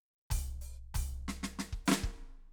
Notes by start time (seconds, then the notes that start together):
0.30 open hi-hat, kick, floor tom
0.61 hi-hat pedal
0.94 open hi-hat, kick, floor tom
1.28 snare
1.43 snare
1.59 snare
1.73 kick
1.86 snare, hi-hat pedal
1.92 snare
2.04 kick